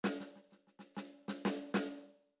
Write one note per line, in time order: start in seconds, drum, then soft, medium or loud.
0.03 snare medium
0.03 hi-hat pedal soft
0.20 snare soft
0.36 snare soft
0.50 snare soft
0.50 hi-hat pedal soft
0.67 snare soft
0.79 snare soft
0.95 snare soft
0.95 hi-hat pedal soft
1.28 snare medium
1.45 snare medium
1.74 snare medium